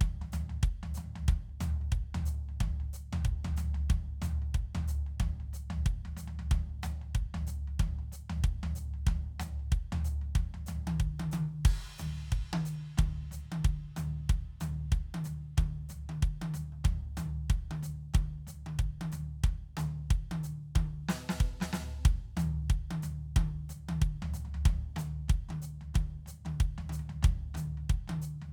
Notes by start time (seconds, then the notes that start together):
0.01 kick, floor tom
0.21 floor tom
0.32 floor tom, hi-hat pedal
0.50 floor tom
0.63 kick
0.83 floor tom
0.94 floor tom, hi-hat pedal
1.16 floor tom
1.28 kick, floor tom
1.49 floor tom
1.61 floor tom, hi-hat pedal
1.81 floor tom
1.92 kick, floor tom
2.15 floor tom
2.26 floor tom, hi-hat pedal
2.49 floor tom
2.60 kick, floor tom
2.80 floor tom
2.93 floor tom, hi-hat pedal
3.13 floor tom
3.25 kick, floor tom
3.45 floor tom
3.57 floor tom, hi-hat pedal
3.75 floor tom
3.90 kick, floor tom
4.22 floor tom, hi-hat pedal
4.42 floor tom
4.54 kick, floor tom
4.75 floor tom
4.88 floor tom, hi-hat pedal
5.07 floor tom
5.20 kick, floor tom
5.40 floor tom
5.53 floor tom, hi-hat pedal
5.70 floor tom
5.86 kick, floor tom
6.05 kick, floor tom
6.17 floor tom, hi-hat pedal
6.28 floor tom
6.39 floor tom
6.51 kick, floor tom
6.69 floor tom
6.83 hi-hat pedal, floor tom
7.02 floor tom
7.15 kick, floor tom
7.34 floor tom
7.47 floor tom, hi-hat pedal
7.68 floor tom
7.80 kick, floor tom
7.99 floor tom
8.12 floor tom, hi-hat pedal
8.30 floor tom
8.44 kick, floor tom
8.63 floor tom
8.75 floor tom, hi-hat pedal
8.94 floor tom
9.07 kick, floor tom
9.27 floor tom
9.40 hi-hat pedal, floor tom
9.59 floor tom
9.72 kick, floor tom
9.92 floor tom
10.05 floor tom, hi-hat pedal
10.22 floor tom
10.35 kick, floor tom
10.54 floor tom
10.66 floor tom, hi-hat pedal
10.87 high tom
11.00 kick
11.20 high tom
11.32 hi-hat pedal, high tom
11.65 kick, crash
11.98 kick, floor tom, hi-hat pedal, high tom
12.32 kick, floor tom
12.53 high tom
12.65 hi-hat pedal
12.98 kick, floor tom, high tom
13.31 floor tom, hi-hat pedal
13.52 high tom
13.65 kick, floor tom
13.97 floor tom, hi-hat pedal, high tom
14.29 kick, floor tom
14.61 floor tom, hi-hat pedal, high tom
14.92 kick, floor tom
15.14 high tom
15.24 floor tom, hi-hat pedal
15.57 kick, floor tom, high tom
15.89 floor tom, hi-hat pedal
16.09 high tom
16.23 kick, floor tom
16.42 high tom
16.54 floor tom, hi-hat pedal
16.72 high tom
16.85 kick, floor tom
17.17 floor tom, hi-hat pedal, high tom
17.50 kick, floor tom
17.71 high tom
17.82 kick, floor tom, hi-hat pedal
18.14 kick, floor tom, high tom
18.47 floor tom, hi-hat pedal
18.66 high tom
18.79 kick, floor tom
19.01 high tom
19.12 floor tom, hi-hat pedal
19.44 kick, floor tom
19.77 floor tom, hi-hat pedal, high tom
20.11 kick, floor tom
20.31 high tom
20.43 floor tom, hi-hat pedal
20.75 kick, floor tom, high tom
21.09 snare, floor tom, hi-hat pedal
21.29 snare, floor tom
21.40 kick
21.60 snare, floor tom
21.73 snare, floor tom, hi-hat pedal
22.05 kick, floor tom
22.37 floor tom, hi-hat pedal, high tom
22.70 kick, floor tom
22.91 high tom
23.03 floor tom, hi-hat pedal
23.36 kick, floor tom, high tom
23.69 floor tom, hi-hat pedal
23.89 floor tom, high tom
24.02 kick
24.22 floor tom
24.34 floor tom, hi-hat pedal
24.45 floor tom
24.54 floor tom
24.66 kick, floor tom
24.96 floor tom, hi-hat pedal, high tom
25.29 kick, floor tom
25.49 floor tom, high tom
25.62 hi-hat pedal
25.81 floor tom
25.95 kick, floor tom, high tom
26.26 floor tom, hi-hat pedal
26.45 floor tom, high tom
26.60 kick
26.78 floor tom
26.90 hi-hat pedal, high tom
26.99 floor tom
27.23 kick, floor tom
27.54 floor tom, hi-hat pedal, high tom
27.77 floor tom
27.90 kick, floor tom
28.08 floor tom, high tom
28.22 hi-hat pedal
28.42 floor tom